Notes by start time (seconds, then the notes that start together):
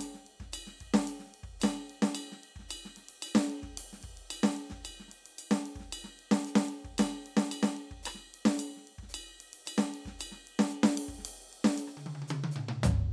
0.01 hi-hat pedal, ride bell
0.15 snare
0.27 ride
0.40 kick, snare
0.53 hi-hat pedal, ride bell
0.67 snare
0.81 kick, ride
0.94 snare
1.07 hi-hat pedal, ride
1.20 snare
1.26 snare
1.34 ride
1.44 kick
1.60 snare, hi-hat pedal, ride bell
1.90 ride
2.02 snare
2.15 hi-hat pedal, ride bell
2.32 snare
2.44 ride
2.56 kick, snare
2.69 kick, hi-hat pedal, ride bell
2.85 snare
2.97 snare, ride
3.09 ride
3.23 hi-hat pedal, ride bell
3.35 snare
3.50 ride
3.62 kick, snare
3.78 hi-hat pedal, ride
3.93 snare
4.01 kick, snare, ride
4.18 ride
4.31 hi-hat pedal, ride bell
4.44 snare
4.57 ride
4.70 kick, snare
4.84 hi-hat pedal, ride bell
5.00 snare
5.08 snare, ride
5.26 ride
5.39 hi-hat pedal, ride bell
5.51 snare
5.66 ride
5.76 kick
5.80 snare
5.93 hi-hat pedal, ride bell
6.04 snare
6.19 ride
6.32 snare
6.45 hi-hat pedal, ride
6.56 snare
6.69 ride
6.85 kick
6.98 snare, hi-hat pedal, ride bell
7.26 ride
7.37 snare
7.52 hi-hat pedal, ride bell
7.63 snare
7.77 ride
7.91 kick
8.03 cross-stick, hi-hat pedal, ride bell
8.15 snare
8.34 ride
8.46 snare
8.57 hi-hat pedal, ride bell
8.77 snare
8.88 ride
8.99 kick
9.03 snare
9.09 snare, hi-hat pedal
9.15 ride bell
9.41 ride
9.53 ride
9.66 hi-hat pedal, ride bell
9.78 snare
9.94 ride
10.06 kick, snare
10.19 hi-hat pedal, ride bell
10.32 snare
10.48 ride
10.59 snare
10.70 hi-hat pedal, ride
10.84 snare
10.98 ride
11.09 kick
11.19 snare
11.25 hi-hat pedal, ride
11.53 ride
11.65 snare
11.77 hi-hat pedal, ride
11.88 cross-stick
11.97 hi-hat pedal, high tom
12.06 high tom
12.15 high tom
12.22 high tom
12.28 hi-hat pedal, high tom
12.44 high tom
12.52 hi-hat pedal
12.56 mid tom
12.69 mid tom
12.83 kick, hi-hat pedal, floor tom
12.98 kick